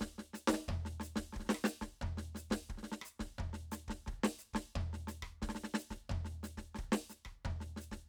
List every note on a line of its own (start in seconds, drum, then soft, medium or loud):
0.01 kick soft
0.01 snare medium
0.18 snare soft
0.34 snare soft
0.34 hi-hat pedal medium
0.48 kick soft
0.48 snare medium
0.53 snare soft
0.68 kick soft
0.68 floor tom medium
0.85 snare soft
1.00 snare soft
1.00 hi-hat pedal medium
1.16 kick soft
1.16 snare medium
1.33 kick soft
1.33 snare soft
1.40 snare soft
1.45 snare soft
1.49 snare medium
1.55 cross-stick medium
1.64 snare medium
1.64 hi-hat pedal medium
1.82 kick soft
1.82 snare soft
2.02 kick soft
2.02 floor tom medium
2.18 snare soft
2.35 snare soft
2.35 hi-hat pedal medium
2.50 kick soft
2.50 snare medium
2.69 kick soft
2.69 snare soft
2.78 snare soft
2.83 snare soft
2.92 snare soft
3.02 cross-stick medium
3.02 hi-hat pedal medium
3.20 kick soft
3.20 snare soft
3.39 kick soft
3.39 floor tom medium
3.53 snare soft
3.72 snare soft
3.72 hi-hat pedal medium
3.88 kick soft
3.88 snare soft
4.07 kick soft
4.07 snare soft
4.24 snare medium
4.39 cross-stick soft
4.39 hi-hat pedal medium
4.54 kick soft
4.54 snare medium
4.76 kick soft
4.76 floor tom medium
4.93 snare soft
5.08 snare soft
5.08 hi-hat pedal medium
5.23 kick soft
5.23 cross-stick medium
5.42 kick soft
5.42 snare soft
5.49 snare soft
5.55 snare soft
5.64 snare soft
5.74 snare medium
5.79 hi-hat pedal medium
5.91 kick soft
5.91 snare soft
6.10 kick soft
6.10 floor tom medium
6.25 snare soft
6.43 snare soft
6.43 hi-hat pedal medium
6.58 kick soft
6.58 snare soft
6.75 kick soft
6.75 snare soft
6.92 snare medium
7.10 snare soft
7.10 hi-hat pedal medium
7.25 kick soft
7.25 cross-stick soft
7.45 kick soft
7.45 floor tom medium
7.61 snare soft
7.77 snare soft
7.81 hi-hat pedal soft
7.92 kick soft
7.92 snare soft